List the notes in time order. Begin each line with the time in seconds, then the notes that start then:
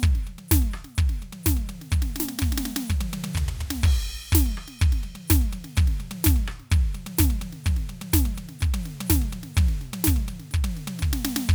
0.01 kick, hi-hat pedal, high tom
0.16 snare
0.24 hi-hat pedal, high tom
0.39 high tom
0.49 kick, snare, hi-hat pedal
0.63 high tom
0.72 cross-stick, hi-hat pedal
0.85 snare
0.96 kick, hi-hat pedal, high tom
1.10 snare
1.19 hi-hat pedal
1.23 high tom
1.33 high tom
1.44 kick, snare, hi-hat pedal
1.57 high tom
1.67 hi-hat pedal, high tom
1.82 snare
1.91 kick, hi-hat pedal, high tom
2.03 snare
2.14 snare, hi-hat pedal
2.21 snare
2.29 snare
2.39 kick, snare, hi-hat pedal
2.53 snare
2.58 snare
2.62 snare, hi-hat pedal
2.77 snare
2.88 kick, hi-hat pedal, high tom
3.01 high tom
3.09 hi-hat pedal
3.14 high tom
3.25 high tom
3.34 kick, floor tom, hi-hat pedal
3.49 floor tom
3.57 floor tom, hi-hat pedal
3.71 snare
3.82 kick, hi-hat pedal, crash
4.05 hi-hat pedal
4.30 kick, hi-hat pedal
4.36 snare
4.47 high tom
4.55 cross-stick, hi-hat pedal
4.69 snare
4.80 kick, hi-hat pedal, high tom
4.93 snare
5.03 hi-hat pedal, high tom
5.16 high tom
5.28 kick, snare, hi-hat pedal
5.42 high tom
5.52 hi-hat pedal, high tom
5.65 snare
5.76 kick, hi-hat pedal, high tom
5.88 snare
5.99 hi-hat pedal, high tom
6.12 high tom
6.24 kick, snare, hi-hat pedal
6.37 high tom
6.47 cross-stick, hi-hat pedal
6.60 snare
6.71 kick, hi-hat pedal, high tom
6.94 hi-hat pedal, high tom
7.07 high tom
7.18 kick, snare, hi-hat pedal
7.31 high tom
7.41 hi-hat pedal, high tom
7.53 snare
7.65 kick, hi-hat pedal, high tom
7.77 snare
7.87 hi-hat pedal, high tom
8.02 high tom
8.13 kick, snare, hi-hat pedal
8.26 high tom
8.36 hi-hat pedal, high tom
8.50 snare
8.60 kick, snare, hi-hat pedal
8.75 high tom
8.83 snare, hi-hat pedal
9.01 high tom
9.07 kick, snare, hi-hat pedal
9.22 high tom
9.30 hi-hat pedal, high tom
9.44 snare
9.55 kick, hi-hat pedal, high tom
9.69 snare
9.79 snare, hi-hat pedal
9.94 high tom
10.05 kick, snare, hi-hat pedal
10.17 high tom
10.28 hi-hat pedal, high tom
10.40 snare
10.52 kick, snare, hi-hat pedal
10.65 high tom
10.75 snare, hi-hat pedal
10.88 high tom
10.99 kick, snare, hi-hat pedal
11.14 snare
11.22 snare, hi-hat pedal
11.37 snare
11.47 kick, hi-hat pedal